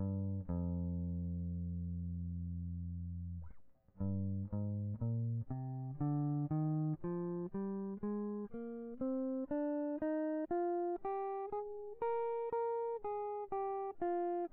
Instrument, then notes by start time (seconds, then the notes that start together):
electric guitar
0.00 G2
0.51 F2
4.02 G2
4.54 G#2
5.03 A#2
5.52 C3
6.01 D3
6.52 D#3
7.04 F3
7.55 G3
8.03 G#3
8.54 A#3
9.01 C4
9.51 D4
10.02 D#4
10.51 F4
11.05 G4
11.52 G#4
12.02 A#4
12.53 A#4
13.04 G#4
13.52 G4
14.02 F4